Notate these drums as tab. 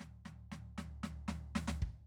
SD |g-g-g-g-g-o-oo--|
FT |g-g-g-o-o-o-oo--|
BD |--------------o-|